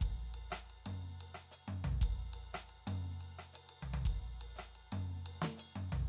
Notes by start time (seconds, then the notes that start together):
0.01 kick, ride
0.34 ride
0.50 cross-stick, hi-hat pedal
0.70 ride
0.86 mid tom, ride
1.21 ride
1.34 cross-stick
1.51 hi-hat pedal, ride bell
1.68 mid tom
1.84 floor tom
2.00 kick, hi-hat pedal, ride
2.33 ride
2.53 cross-stick, hi-hat pedal
2.69 ride
2.87 mid tom, ride
3.21 ride
3.38 cross-stick
3.53 hi-hat pedal, ride
3.69 ride
3.82 kick, floor tom
3.93 floor tom
4.02 kick, hi-hat pedal
4.07 ride
4.41 ride
4.56 cross-stick, hi-hat pedal
4.75 ride
4.92 mid tom, ride
5.26 ride
5.42 snare
5.57 hi-hat pedal, ride bell
5.76 mid tom
5.92 floor tom